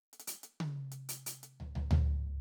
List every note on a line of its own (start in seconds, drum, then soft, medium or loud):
0.13 closed hi-hat medium
0.20 closed hi-hat medium
0.27 closed hi-hat loud
0.43 closed hi-hat medium
0.60 high tom loud
0.92 closed hi-hat medium
1.09 closed hi-hat loud
1.26 closed hi-hat loud
1.43 closed hi-hat medium
1.60 floor tom medium
1.75 floor tom medium
1.91 floor tom loud